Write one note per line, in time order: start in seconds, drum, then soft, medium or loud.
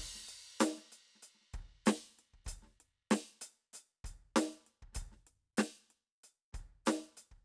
0.15 snare soft
0.20 snare soft
0.23 snare soft
0.28 closed hi-hat soft
0.60 closed hi-hat loud
0.60 snare loud
0.78 snare soft
0.92 closed hi-hat soft
1.15 snare soft
1.23 closed hi-hat soft
1.35 snare soft
1.41 snare soft
1.54 kick soft
1.54 closed hi-hat soft
1.85 closed hi-hat medium
1.85 snare loud
1.85 hi-hat pedal soft
2.19 closed hi-hat soft
2.34 kick soft
2.45 closed hi-hat medium
2.45 kick soft
2.45 snare soft
2.45 hi-hat pedal soft
2.63 snare soft
2.65 snare soft
2.70 snare soft
2.80 closed hi-hat soft
3.11 closed hi-hat medium
3.11 snare loud
3.42 open hi-hat medium
3.74 closed hi-hat soft
3.74 hi-hat pedal medium
4.05 closed hi-hat soft
4.05 kick soft
4.36 closed hi-hat medium
4.36 snare loud
4.67 closed hi-hat soft
4.83 kick soft
4.93 closed hi-hat medium
4.93 kick soft
4.93 snare soft
5.12 snare soft
5.27 closed hi-hat soft
5.58 closed hi-hat medium
5.58 snare medium
5.91 closed hi-hat soft
6.24 closed hi-hat soft
6.53 closed hi-hat soft
6.53 kick soft
6.53 snare soft
6.86 closed hi-hat medium
6.86 snare medium
6.86 hi-hat pedal soft
7.17 closed hi-hat soft
7.32 kick soft